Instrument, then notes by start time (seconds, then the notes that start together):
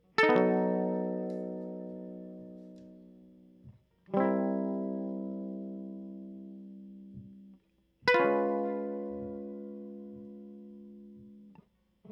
electric guitar
0.19 A4
0.24 D#4
0.30 B3
0.37 F#3
4.15 G3 C4
4.21 E4 A#4
8.08 B4
8.15 F4
8.21 C#4
8.25 G#3